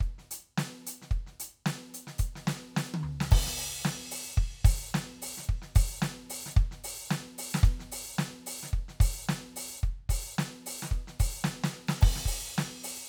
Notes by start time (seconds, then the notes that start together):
0.01 kick, closed hi-hat
0.19 snare
0.31 closed hi-hat
0.58 snare
0.87 closed hi-hat
1.02 snare
1.11 kick, closed hi-hat
1.27 snare
1.40 closed hi-hat
1.66 snare
1.95 closed hi-hat
2.07 snare
2.19 closed hi-hat, kick
2.36 snare
2.48 snare
2.77 snare
2.85 hi-hat pedal
2.94 high tom
3.04 floor tom
3.21 snare
3.32 kick, crash
3.47 snare
3.58 open hi-hat
3.82 snare, hi-hat pedal
4.12 open hi-hat
4.34 kick, hi-hat pedal
4.65 open hi-hat, kick
4.90 hi-hat pedal
4.95 snare
5.22 open hi-hat
5.38 snare
5.45 closed hi-hat, hi-hat pedal
5.49 kick
5.62 snare
5.76 open hi-hat, kick
6.00 snare, hi-hat pedal
6.30 open hi-hat
6.46 snare
6.52 hi-hat pedal
6.57 kick, closed hi-hat
6.72 snare
6.84 open hi-hat
7.09 snare, hi-hat pedal
7.39 open hi-hat
7.55 snare, hi-hat pedal
7.64 kick, closed hi-hat
7.80 snare
7.92 open hi-hat
8.16 snare, hi-hat pedal
8.47 open hi-hat
8.63 snare
8.68 hi-hat pedal
8.74 kick, closed hi-hat
8.89 snare
9.01 open hi-hat, kick
9.26 snare, hi-hat pedal
9.57 open hi-hat
9.79 closed hi-hat, hi-hat pedal
9.84 kick
10.10 open hi-hat, kick
10.35 hi-hat pedal
10.39 snare
10.67 open hi-hat
10.83 snare
10.87 hi-hat pedal
10.92 kick, closed hi-hat
11.08 snare
11.20 open hi-hat, kick
11.42 snare, hi-hat pedal
11.64 snare
11.88 snare, hi-hat pedal
12.02 kick, crash
12.16 snare
12.26 open hi-hat, kick
12.55 snare, hi-hat pedal
12.84 open hi-hat